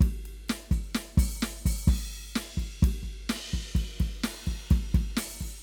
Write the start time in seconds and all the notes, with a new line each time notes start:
0.01 kick, ride
0.26 ride
0.49 snare, ride
0.71 open hi-hat, kick
0.95 snare
1.18 open hi-hat, kick
1.43 snare
1.66 open hi-hat, kick
1.88 kick, crash
2.14 ride
2.33 snare, hi-hat pedal
2.37 ride
2.58 kick, ride
2.83 kick, ride
3.03 kick
3.30 snare, crash
3.36 snare
3.54 kick, ride
3.75 kick, ride
3.96 snare, ride
4.00 kick
4.24 snare, crash
4.47 kick, ride
4.71 kick, ride
4.95 kick, ride
5.17 open hi-hat, snare
5.41 kick, ride